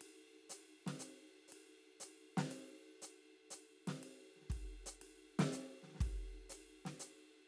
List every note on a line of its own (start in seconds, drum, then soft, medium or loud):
0.01 ride medium
0.50 hi-hat pedal medium
0.50 ride medium
0.86 snare soft
0.86 ride medium
0.99 hi-hat pedal medium
0.99 ride soft
1.48 hi-hat pedal soft
1.52 ride medium
2.00 hi-hat pedal medium
2.00 ride medium
2.37 snare medium
2.37 ride medium
2.50 hi-hat pedal soft
2.50 ride medium
3.02 hi-hat pedal medium
3.02 ride soft
3.51 hi-hat pedal medium
3.51 ride soft
3.87 snare soft
3.87 ride medium
4.03 ride medium
4.36 snare soft
4.39 snare soft
4.41 snare soft
4.50 kick soft
4.50 ride soft
4.86 hi-hat pedal medium
5.01 ride medium
5.39 snare medium
5.39 ride medium
5.52 hi-hat pedal medium
5.52 ride soft
5.83 snare soft
5.88 snare soft
5.91 snare soft
5.95 snare soft
6.01 kick medium
6.01 ride medium
6.49 hi-hat pedal medium
6.49 ride medium
6.85 snare soft
6.85 ride soft
7.00 hi-hat pedal medium
7.00 ride soft